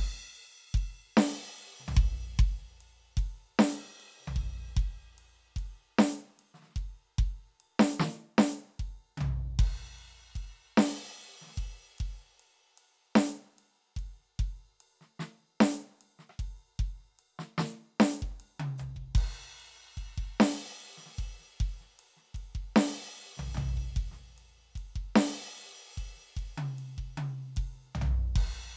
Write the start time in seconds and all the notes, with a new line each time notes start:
0.21 kick
0.35 ride
0.74 kick, ride
1.17 snare, crash
1.32 snare
1.58 ride
1.80 high tom
1.88 floor tom
1.97 kick
2.39 kick, ride
2.81 ride
3.17 kick, ride
3.59 snare, crash
3.73 snare
4.00 ride
4.20 high tom
4.27 floor tom
4.36 kick
4.76 kick, ride
5.18 ride
5.56 kick, ride
5.99 snare, ride
6.37 snare, ride
6.54 snare
6.59 snare
6.62 snare
6.76 kick, ride
7.18 kick, ride
7.60 ride
7.79 snare
8.00 snare
8.38 snare, ride
8.79 kick, ride
9.17 floor tom, high tom
9.59 kick, ride, crash
9.98 ride
10.35 kick, ride
10.77 snare, crash
11.21 ride
11.41 snare
11.46 snare
11.50 snare
11.57 kick, ride
11.98 kick, ride
12.20 snare
12.39 ride
12.78 ride
13.15 snare, ride
13.58 ride
13.96 kick, ride
14.19 snare
14.39 kick, ride
14.80 ride
15.01 snare
15.19 snare, ride
15.60 snare, ride
15.74 snare
16.01 ride
16.19 snare
16.29 cross-stick
16.39 kick, ride
16.79 kick, ride
16.99 snare
17.19 ride
17.39 snare
17.58 snare, ride
18.00 snare, ride
18.22 kick
18.40 ride
18.59 high tom
18.78 hi-hat pedal, floor tom
18.96 kick
19.15 kick, ride, crash
19.60 ride
19.97 kick, ride
20.18 kick
20.40 snare, crash
20.80 ride
20.97 snare
21.06 snare
21.18 kick, ride
21.39 snare
21.60 kick, ride
21.80 snare
21.99 ride
22.16 snare
22.34 kick, ride
22.55 kick
22.76 snare, crash
23.18 ride
23.37 floor tom, high tom
23.55 floor tom, high tom
23.77 kick
23.96 kick, ride
24.11 snare
24.19 snare
24.38 ride
24.57 snare
24.75 kick, ride
24.96 kick
25.16 snare, crash
25.58 ride
25.97 kick, ride
26.16 snare
26.37 kick, ride
26.57 high tom
26.78 ride
26.98 kick
27.17 high tom, ride
27.56 kick, ride
27.95 floor tom
28.01 floor tom
28.36 kick, crash